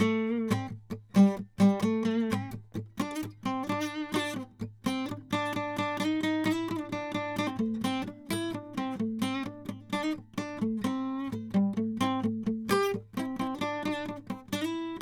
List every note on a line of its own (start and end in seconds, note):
0.01 0.32 A3
1.16 1.39 G3
1.61 1.80 G3
1.81 2.04 A3
2.04 2.17 A3
3.00 3.24 D4
3.46 3.68 C4
3.70 3.97 D4
4.16 4.35 D4
4.35 4.49 C4
4.87 5.09 C4
5.33 5.53 D4
5.54 5.77 D4
5.77 5.98 D4
5.98 6.24 D#4
6.25 6.45 D#4
6.45 6.69 E4
6.69 6.78 E4
6.78 6.91 D4
6.93 7.13 D4
7.13 7.37 D4
7.37 7.48 D4
7.48 7.68 C4
7.60 7.89 A3
7.85 8.06 C4
8.09 8.35 D4
8.31 8.58 E4
8.56 8.77 D4
8.78 8.99 C4
9.01 9.28 A3
9.22 9.44 C4
9.45 9.66 D4
9.67 9.91 C4
9.94 10.17 D4
10.38 10.63 D4
10.62 10.84 A3
10.85 11.38 C4
11.33 11.55 A3
11.55 11.75 G3
11.78 12.02 A3
12.01 12.24 C4
12.24 12.45 A3
12.47 12.82 A3
12.71 13.01 G4
13.18 13.38 C4
13.40 13.60 C4
13.62 13.84 D4
13.93 14.07 D4
14.10 14.24 D4
14.31 14.45 C4
14.53 15.01 E4